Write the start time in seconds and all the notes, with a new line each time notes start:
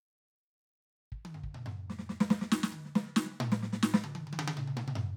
1.12 kick
1.26 high tom
1.35 floor tom
1.44 kick
1.55 mid tom
1.66 floor tom
1.90 snare
1.99 snare
2.10 snare
2.21 snare
2.31 snare
2.42 snare
2.52 snare
2.64 snare
2.73 high tom
2.86 snare
2.96 snare
3.07 snare
3.17 snare
3.26 snare
3.32 snare
3.37 snare, mid tom
3.52 snare
3.63 snare
3.83 snare
3.94 snare
4.04 high tom
4.16 high tom
4.28 high tom
4.33 high tom
4.40 high tom
4.48 high tom
4.58 mid tom
4.68 mid tom
4.77 mid tom
4.88 mid tom
4.96 floor tom
5.13 kick